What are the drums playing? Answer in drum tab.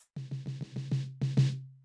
Hi-hat    |p-----------|
Snare     |-ggoooo-oo--|
Floor tom |-oooooo-oo--|